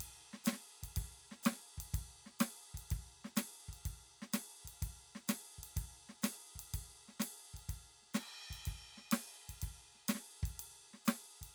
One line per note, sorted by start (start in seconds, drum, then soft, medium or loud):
0.01 ride medium
0.34 snare soft
0.45 snare medium
0.45 hi-hat pedal loud
0.45 ride loud
0.53 snare soft
0.83 kick soft
0.83 ride medium
0.93 kick soft
0.93 hi-hat pedal soft
0.93 ride loud
1.32 snare soft
1.43 snare medium
1.43 hi-hat pedal loud
1.43 ride loud
1.52 snare soft
1.78 kick soft
1.78 ride medium
1.94 kick soft
1.94 ride medium
2.26 snare soft
2.40 snare medium
2.40 hi-hat pedal loud
2.40 ride loud
2.75 kick soft
2.75 ride medium
2.91 kick soft
2.91 ride medium
3.25 snare soft
3.36 snare medium
3.36 hi-hat pedal loud
3.36 ride loud
3.69 kick soft
3.73 ride soft
3.86 kick soft
3.86 ride medium
4.22 snare soft
4.33 snare medium
4.33 hi-hat pedal loud
4.33 ride loud
4.65 kick soft
4.65 ride medium
4.82 kick soft
4.82 ride medium
5.16 snare soft
5.28 snare medium
5.28 hi-hat pedal loud
5.28 ride loud
5.58 kick soft
5.64 ride medium
5.77 kick soft
5.77 ride medium
6.09 snare soft
6.23 snare medium
6.23 hi-hat pedal loud
6.23 ride loud
6.56 kick soft
6.56 ride medium
6.74 kick soft
6.74 ride loud
7.09 snare soft
7.20 snare medium
7.20 hi-hat pedal loud
7.20 ride loud
7.54 kick soft
7.54 ride soft
7.69 kick soft
7.69 ride medium
8.03 snare soft
8.14 snare medium
8.14 hi-hat pedal loud
8.14 ride medium
8.51 kick soft
8.51 ride medium
8.66 kick soft
8.66 ride medium
8.98 snare soft
9.12 snare medium
9.12 hi-hat pedal loud
9.12 ride loud
9.49 kick soft
9.49 ride medium
9.59 kick soft
9.59 hi-hat pedal soft
9.59 ride medium
9.95 snare soft
10.08 snare medium
10.08 hi-hat pedal medium
10.08 ride loud
10.15 snare soft
10.43 kick soft
10.43 ride medium
10.60 ride medium
10.94 snare soft
11.06 snare medium
11.06 hi-hat pedal loud
11.06 ride loud
11.42 kick soft
11.42 ride medium